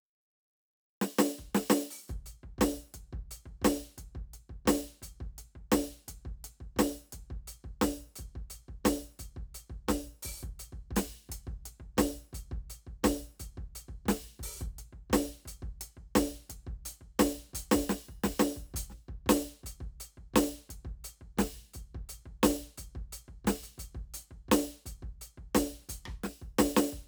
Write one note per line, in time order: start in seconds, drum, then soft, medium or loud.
1.01 snare loud
1.18 snare loud
1.38 kick soft
1.55 snare loud
1.70 snare loud
1.90 open hi-hat medium
2.08 kick medium
2.08 hi-hat pedal soft
2.26 closed hi-hat medium
2.43 kick soft
2.58 kick medium
2.58 snare loud
2.58 closed hi-hat medium
2.94 kick soft
2.94 closed hi-hat medium
3.13 kick medium
3.31 closed hi-hat medium
3.46 kick soft
3.62 closed hi-hat medium
3.62 kick medium
3.62 snare loud
3.98 kick soft
3.98 closed hi-hat medium
4.15 kick medium
4.33 closed hi-hat medium
4.49 kick soft
4.65 closed hi-hat medium
4.65 kick medium
4.65 snare loud
5.02 closed hi-hat medium
5.02 kick soft
5.20 kick medium
5.38 closed hi-hat medium
5.55 kick soft
5.72 kick soft
5.72 snare loud
5.72 closed hi-hat medium
6.08 kick soft
6.08 closed hi-hat medium
6.25 kick medium
6.44 closed hi-hat medium
6.60 kick soft
6.76 kick soft
6.76 snare loud
6.76 closed hi-hat medium
7.12 kick soft
7.12 closed hi-hat medium
7.30 kick medium
7.47 closed hi-hat medium
7.64 kick soft
7.81 closed hi-hat medium
7.81 kick medium
7.81 snare loud
8.16 closed hi-hat medium
8.16 kick soft
8.35 kick soft
8.50 closed hi-hat medium
8.68 kick soft
8.84 closed hi-hat loud
8.84 kick medium
8.84 snare loud
9.19 closed hi-hat medium
9.19 kick soft
9.36 kick medium
9.54 closed hi-hat medium
9.70 kick soft
9.88 closed hi-hat medium
9.88 kick medium
9.88 snare medium
10.22 open hi-hat loud
10.22 kick soft
10.39 kick medium
10.39 hi-hat pedal soft
10.59 closed hi-hat medium
10.72 kick soft
10.91 kick medium
10.96 closed hi-hat loud
10.96 snare loud
11.29 kick soft
11.29 closed hi-hat medium
11.47 kick medium
11.65 closed hi-hat medium
11.80 kick soft
11.97 closed hi-hat medium
11.97 kick medium
11.97 snare loud
12.33 closed hi-hat medium
12.33 kick soft
12.51 kick medium
12.70 closed hi-hat medium
12.87 kick soft
13.03 closed hi-hat medium
13.03 kick medium
13.03 snare loud
13.39 closed hi-hat medium
13.39 kick soft
13.57 kick medium
13.75 closed hi-hat medium
13.88 kick soft
14.06 closed hi-hat medium
14.06 kick medium
14.06 snare loud
14.39 open hi-hat loud
14.39 kick soft
14.58 kick medium
14.58 hi-hat pedal soft
14.78 closed hi-hat medium
14.92 kick soft
15.10 closed hi-hat medium
15.10 kick medium
15.10 snare loud
15.45 closed hi-hat medium
15.45 kick soft
15.62 kick medium
15.81 closed hi-hat loud
15.97 kick soft
16.15 closed hi-hat medium
16.15 kick medium
16.15 snare loud
16.49 kick soft
16.49 closed hi-hat medium
16.67 kick medium
16.85 closed hi-hat loud
17.01 kick soft
17.19 kick medium
17.19 snare loud
17.19 closed hi-hat medium
17.48 snare soft
17.53 closed hi-hat loud
17.53 kick soft
17.71 kick medium
17.71 snare loud
17.89 snare loud
18.08 kick soft
18.24 kick medium
18.24 snare loud
18.39 snare loud
18.56 kick soft
18.74 closed hi-hat loud
18.74 kick medium
18.90 snare soft
19.08 kick soft
19.26 closed hi-hat loud
19.26 kick medium
19.26 snare loud
19.63 closed hi-hat medium
19.63 kick soft
19.80 kick medium
20.00 closed hi-hat medium
20.17 kick soft
20.34 closed hi-hat medium
20.34 kick medium
20.34 snare loud
20.69 kick soft
20.69 closed hi-hat medium
20.85 kick medium
21.04 closed hi-hat medium
21.21 kick soft
21.37 closed hi-hat medium
21.37 kick medium
21.37 snare loud
21.73 closed hi-hat medium
21.73 kick soft
21.94 kick medium
22.09 closed hi-hat medium
22.26 kick soft
22.43 closed hi-hat loud
22.43 kick medium
22.43 snare loud
22.77 closed hi-hat medium
22.77 kick soft
22.95 kick medium
23.12 closed hi-hat medium
23.28 kick soft
23.44 closed hi-hat medium
23.44 kick soft
23.44 snare loud
23.63 closed hi-hat medium
23.78 closed hi-hat medium
23.78 kick soft
23.95 kick medium
24.14 closed hi-hat medium
24.31 kick soft
24.48 closed hi-hat loud
24.48 kick soft
24.48 snare loud
24.86 closed hi-hat medium
24.86 kick soft
25.02 kick soft
25.21 closed hi-hat medium
25.37 kick soft
25.55 closed hi-hat loud
25.55 kick medium
25.55 snare loud
25.82 snare soft
25.89 closed hi-hat medium
25.89 kick soft
26.05 kick medium
26.05 cross-stick medium
26.23 snare medium
26.42 kick soft
26.58 kick medium
26.58 snare loud
26.77 snare loud
26.92 kick soft